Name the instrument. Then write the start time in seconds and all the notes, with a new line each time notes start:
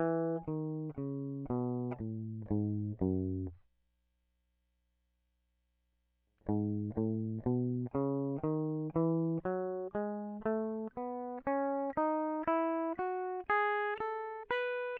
electric guitar
0.00 E3
0.49 D#3
0.99 C#3
1.52 B2
2.02 A2
2.45 G#2
2.53 G#2
3.04 F#2
6.50 G#2
6.99 A2
7.48 B2
7.96 C#3
8.45 D#3
8.97 E3
9.46 F#3
9.96 G#3
10.46 A3
10.98 B3
11.47 C#4
11.98 D#4
12.48 E4
12.99 F#4
13.50 G#4
14.01 A4
14.51 B4